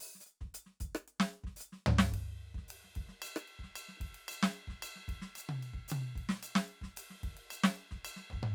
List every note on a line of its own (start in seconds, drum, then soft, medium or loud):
0.01 open hi-hat medium
0.16 snare soft
0.21 hi-hat pedal medium
0.27 closed hi-hat soft
0.41 kick soft
0.41 snare soft
0.55 closed hi-hat medium
0.67 snare soft
0.81 closed hi-hat soft
0.81 kick soft
0.96 cross-stick medium
1.08 closed hi-hat soft
1.20 kick soft
1.20 snare medium
1.34 closed hi-hat soft
1.44 kick soft
1.44 snare soft
1.57 hi-hat pedal medium
1.61 closed hi-hat medium
1.73 snare soft
1.87 floor tom loud
1.99 snare loud
2.08 hi-hat pedal soft
2.12 kick medium
2.12 ride medium
2.18 kick soft
2.55 kick soft
2.55 snare soft
2.69 hi-hat pedal soft
2.69 ride medium
2.85 snare soft
2.96 kick soft
2.96 ride medium
3.03 kick soft
3.09 snare soft
3.23 hi-hat pedal medium
3.23 ride bell loud
3.37 cross-stick medium
3.48 ride soft
3.60 kick soft
3.64 snare soft
3.76 hi-hat pedal medium
3.76 ride bell loud
3.89 snare soft
3.98 kick soft
3.98 cross-stick soft
4.02 ride medium
4.15 ride medium
4.29 hi-hat pedal medium
4.29 ride bell loud
4.43 snare loud
4.55 ride soft
4.68 kick soft
4.68 snare soft
4.83 hi-hat pedal medium
4.83 ride bell loud
4.96 snare soft
5.09 kick soft
5.09 ride medium
5.15 kick soft
5.22 snare medium
5.36 hi-hat pedal medium
5.36 ride bell medium
5.50 high tom medium
5.63 ride bell medium
5.74 kick soft
5.80 kick soft
5.89 hi-hat pedal medium
5.89 high tom loud
5.89 ride bell medium
6.16 kick soft
6.16 ride soft
6.22 kick soft
6.30 snare loud
6.43 hi-hat pedal medium
6.43 ride bell loud
6.56 snare loud
6.69 ride soft
6.82 kick soft
6.82 snare soft
6.97 hi-hat pedal medium
6.97 ride loud
7.11 snare soft
7.21 kick soft
7.21 snare soft
7.21 ride medium
7.30 kick soft
7.37 ride medium
7.51 hi-hat pedal medium
7.51 ride bell loud
7.64 snare loud
7.77 ride soft
7.92 kick soft
7.92 snare soft
7.97 kick soft
8.05 hi-hat pedal medium
8.05 ride bell loud
8.17 snare soft
8.31 kick soft
8.31 mid tom medium
8.44 mid tom loud